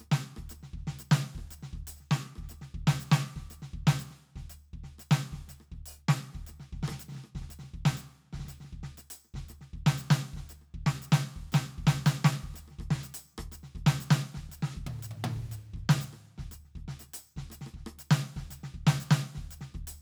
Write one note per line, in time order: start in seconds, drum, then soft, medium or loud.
0.01 cross-stick soft
0.12 snare loud
0.18 cross-stick soft
0.26 snare soft
0.37 kick soft
0.37 cross-stick medium
0.50 cross-stick soft
0.50 snare soft
0.50 percussion medium
0.64 snare soft
0.74 kick soft
0.74 snare soft
0.88 snare medium
0.98 snare soft
0.98 percussion medium
1.00 cross-stick soft
1.00 snare soft
1.12 cross-stick medium
1.12 snare loud
1.27 snare soft
1.36 kick soft
1.36 cross-stick soft
1.51 cross-stick soft
1.51 percussion medium
1.63 snare soft
1.74 kick soft
1.74 cross-stick soft
1.88 percussion loud
1.97 percussion soft
2.01 snare soft
2.12 snare loud
2.17 cross-stick medium
2.26 cross-stick soft
2.36 kick soft
2.36 cross-stick soft
2.43 snare soft
2.50 cross-stick soft
2.50 snare soft
2.50 percussion medium
2.54 percussion soft
2.62 snare soft
2.75 kick soft
2.75 cross-stick soft
2.88 snare loud
2.98 snare soft
3.00 snare soft
3.00 percussion medium
3.12 snare loud
3.26 snare soft
3.37 kick soft
3.37 snare soft
3.51 cross-stick soft
3.51 percussion medium
3.54 percussion soft
3.63 snare soft
3.74 kick soft
3.74 cross-stick soft
3.88 snare loud
4.00 cross-stick soft
4.00 snare soft
4.00 percussion medium
4.12 snare soft
4.36 kick soft
4.36 snare soft
4.50 cross-stick soft
4.50 percussion medium
4.53 percussion soft
4.74 kick soft
4.74 cross-stick soft
4.84 snare soft
4.96 snare soft
4.99 cross-stick soft
4.99 snare soft
4.99 percussion medium
5.12 snare loud
5.33 kick soft
5.33 snare soft
5.40 snare soft
5.49 snare soft
5.49 percussion medium
5.52 percussion soft
5.61 cross-stick soft
5.72 kick soft
5.72 cross-stick soft
5.87 percussion medium
5.92 percussion soft
5.99 snare soft
6.09 snare loud
6.14 cross-stick soft
6.25 snare soft
6.34 kick soft
6.34 snare soft
6.40 snare soft
6.47 cross-stick soft
6.47 percussion medium
6.52 percussion soft
6.61 snare soft
6.73 kick soft
6.73 snare soft
6.84 snare medium
6.89 cross-stick medium
6.89 snare medium
7.00 cross-stick soft
7.00 percussion medium
7.09 snare soft
7.13 snare soft
7.16 snare soft
7.18 snare soft
7.24 cross-stick soft
7.24 snare soft
7.36 kick soft
7.36 snare soft
7.42 snare soft
7.50 cross-stick soft
7.50 snare soft
7.50 percussion medium
7.60 snare soft
7.64 snare soft
7.74 kick soft
7.74 cross-stick soft
7.86 snare loud
7.94 snare soft
7.96 snare soft
7.96 percussion medium
8.18 snare soft
8.25 snare soft
8.34 kick soft
8.34 snare soft
8.40 snare soft
8.46 snare soft
8.48 snare soft
8.48 percussion medium
8.51 percussion soft
8.61 snare soft
8.65 snare soft
8.73 kick soft
8.84 snare soft
8.98 cross-stick soft
8.98 snare soft
8.98 percussion medium
9.11 percussion loud
9.26 cross-stick soft
9.35 kick soft
9.35 snare soft
9.49 cross-stick soft
9.49 snare soft
9.49 percussion medium
9.62 snare soft
9.74 kick soft
9.74 cross-stick soft
9.87 snare loud
9.98 snare soft
9.98 percussion medium
10.00 snare soft
10.11 snare loud
10.34 kick soft
10.34 snare soft
10.50 cross-stick soft
10.50 percussion medium
10.62 cross-stick soft
10.75 kick soft
10.75 snare soft
10.87 snare loud
10.99 snare soft
10.99 percussion medium
11.13 snare loud
11.37 kick soft
11.53 cross-stick soft
11.53 cross-stick medium
11.53 snare loud
11.53 percussion medium
11.61 cross-stick soft
11.77 kick soft
11.77 cross-stick soft
11.88 snare loud
11.98 snare soft
12.07 snare loud
12.07 percussion medium
12.17 snare soft
12.25 snare loud
12.44 kick soft
12.55 cross-stick soft
12.55 percussion medium
12.69 cross-stick soft
12.69 snare soft
12.79 kick soft
12.79 cross-stick soft
12.79 snare soft
12.91 snare loud
13.01 cross-stick soft
13.01 snare soft
13.01 percussion medium
13.15 percussion loud
13.39 kick soft
13.39 cross-stick medium
13.52 cross-stick soft
13.52 snare soft
13.52 percussion medium
13.64 snare soft
13.76 kick soft
13.76 cross-stick soft
13.87 snare loud
13.99 cross-stick soft
13.99 snare soft
13.99 percussion medium
14.11 snare loud
14.16 cross-stick medium
14.24 snare soft
14.35 kick soft
14.35 snare soft
14.49 snare soft
14.49 percussion soft
14.49 percussion medium
14.63 snare medium
14.74 kick soft
14.74 cross-stick soft
14.74 snare soft
14.87 high tom loud
15.00 cross-stick soft
15.00 percussion medium
15.12 high tom medium
15.17 snare soft
15.25 high tom loud
15.37 kick soft
15.51 snare soft
15.51 percussion medium
15.74 kick soft
15.74 cross-stick soft
15.90 snare loud
15.96 cross-stick medium
16.02 snare soft
16.02 percussion medium
16.14 cross-stick soft
16.27 snare soft
16.39 kick soft
16.39 snare soft
16.52 cross-stick soft
16.52 percussion medium
16.54 percussion soft
16.66 snare soft
16.76 kick soft
16.76 cross-stick soft
16.89 snare medium
17.00 cross-stick soft
17.00 snare soft
17.00 percussion medium
17.04 percussion soft
17.14 percussion loud
17.37 kick soft
17.37 snare soft
17.49 cross-stick soft
17.49 snare soft
17.49 percussion medium
17.62 snare soft
17.67 cross-stick medium
17.75 kick soft
17.75 snare soft
17.87 cross-stick medium
17.99 snare soft
17.99 percussion medium
18.12 snare loud
18.25 snare soft
18.37 kick soft
18.37 snare soft
18.51 snare soft
18.51 percussion medium
18.54 percussion soft
18.64 snare soft
18.75 kick soft
18.75 snare soft
18.88 snare loud
19.01 snare soft
19.01 percussion medium
19.12 snare loud
19.25 cross-stick soft
19.36 kick soft
19.36 snare soft
19.50 snare soft
19.50 percussion medium
19.62 snare soft
19.75 kick soft
19.75 cross-stick soft
19.88 percussion loud